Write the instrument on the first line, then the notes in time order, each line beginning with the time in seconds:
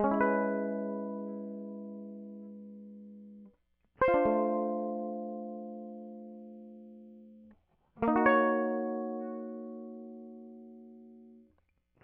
electric guitar
0.00 G#3 C#4
0.11 E4
0.21 B4
4.01 C5
4.08 F4
4.14 C#4 D4
4.26 A3
8.01 A#3 D4
8.08 D#4
8.16 F#4
8.26 C#5